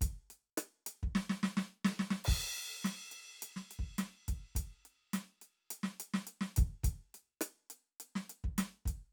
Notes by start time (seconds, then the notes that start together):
0.02 kick, closed hi-hat
0.31 open hi-hat
0.58 cross-stick, closed hi-hat
0.87 closed hi-hat
1.03 kick
1.16 snare
1.30 snare
1.44 snare
1.58 snare
1.85 snare
2.00 snare
2.11 snare
2.25 kick, crash
2.57 open hi-hat
2.85 snare, open hi-hat
3.12 closed hi-hat
3.43 closed hi-hat
3.57 snare
3.71 open hi-hat
3.79 kick
3.99 snare, closed hi-hat
4.29 kick, closed hi-hat
4.56 kick, closed hi-hat
4.86 open hi-hat
5.14 snare, open hi-hat
5.42 open hi-hat
5.71 closed hi-hat
5.84 snare
6.00 closed hi-hat
6.14 snare
6.27 closed hi-hat
6.41 snare
6.57 kick, closed hi-hat
6.84 kick, closed hi-hat
7.15 open hi-hat
7.41 cross-stick, closed hi-hat
7.71 closed hi-hat
8.00 closed hi-hat
8.16 snare
8.30 closed hi-hat
8.44 kick
8.58 snare, closed hi-hat
8.86 kick, closed hi-hat